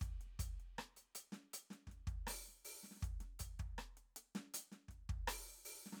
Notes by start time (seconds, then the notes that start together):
0.01 kick, closed hi-hat, hi-hat pedal
0.21 closed hi-hat
0.26 snare
0.39 closed hi-hat, kick
0.60 closed hi-hat
0.78 cross-stick, closed hi-hat
0.96 closed hi-hat
1.15 closed hi-hat
1.32 snare, closed hi-hat
1.53 closed hi-hat
1.70 snare, closed hi-hat
1.87 kick, snare
1.91 closed hi-hat
2.07 kick, closed hi-hat
2.27 open hi-hat, cross-stick
2.30 cross-stick
2.48 snare
2.65 open hi-hat
2.83 snare
2.91 snare
2.96 snare
3.01 kick, closed hi-hat, hi-hat pedal
3.20 snare, closed hi-hat
3.39 closed hi-hat, kick
3.59 kick, closed hi-hat
3.78 cross-stick, closed hi-hat
3.97 closed hi-hat
4.16 closed hi-hat
4.35 snare, closed hi-hat
4.54 closed hi-hat
4.72 snare, closed hi-hat
4.88 kick, snare, closed hi-hat
5.09 kick, closed hi-hat
5.28 open hi-hat, cross-stick
5.65 open hi-hat
5.86 snare
5.92 snare
5.97 snare